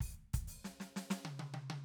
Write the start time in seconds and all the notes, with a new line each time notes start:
0.00 kick, open hi-hat
0.11 hi-hat pedal
0.34 open hi-hat, kick
0.48 hi-hat pedal
0.64 snare
0.80 snare
0.96 snare
1.10 snare
1.25 high tom
1.39 high tom
1.54 high tom
1.70 high tom